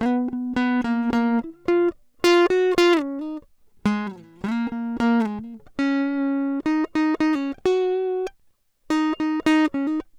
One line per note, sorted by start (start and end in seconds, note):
0.02 0.29 B3
0.29 0.57 B3
0.57 0.84 B3
0.86 1.14 A#3
1.15 1.45 A#3
1.46 1.54 E4
1.69 1.94 F4
2.25 2.52 F4
2.52 2.77 F#4
2.79 2.94 F4
2.94 3.20 C#4
3.21 3.43 D#4
3.86 4.08 G#3
4.08 4.15 F#3
4.45 4.70 A#3
4.74 4.99 A#3
5.01 5.22 A#3
5.22 5.43 G#3
5.45 5.61 A#3
5.80 6.63 C#4
6.67 6.90 D#4
6.96 7.18 D#4
7.21 7.34 D#4
7.34 7.57 C#4
7.66 8.32 F#4
8.91 9.17 D#4
9.21 9.43 D#4
9.47 9.71 D#4
9.76 9.88 C#4
9.88 10.06 D#4